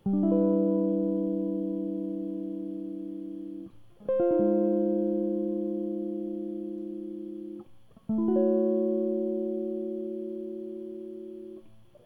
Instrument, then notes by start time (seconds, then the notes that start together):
electric guitar
0.06 G3
0.13 D4
0.23 E4
0.32 B4
4.09 C5
4.20 F4
4.31 D#4
4.40 G#3
8.10 A3
8.18 E4
8.28 F#4
8.36 C#5